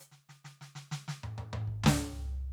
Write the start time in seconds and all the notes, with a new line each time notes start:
0.00 snare, hi-hat pedal
0.11 snare
0.29 snare
0.44 snare
0.61 snare
0.75 snare
0.91 snare
1.08 snare
1.23 closed hi-hat, high tom
1.38 closed hi-hat, high tom
1.53 high tom
1.67 kick
1.84 snare, floor tom